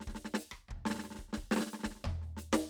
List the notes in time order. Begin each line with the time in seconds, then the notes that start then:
0.01 snare
0.08 kick, snare
0.15 snare
0.25 snare
0.35 snare
0.40 hi-hat pedal
0.52 kick, cross-stick
0.69 kick, floor tom
0.86 snare
0.91 snare
0.95 snare
0.99 snare, hi-hat pedal
1.04 snare
1.11 snare
1.15 kick, snare
1.20 snare
1.29 snare
1.33 snare
1.38 kick
1.52 snare
1.57 snare
1.60 snare
1.71 snare, hi-hat pedal
1.80 snare
1.84 kick, snare
1.91 snare
1.96 snare
2.00 snare
2.05 kick, snare, floor tom
2.22 snare
2.37 snare, hi-hat pedal
2.53 kick, snare